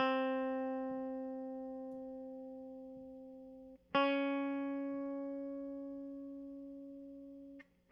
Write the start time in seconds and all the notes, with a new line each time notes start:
0.00 C4
3.95 C#4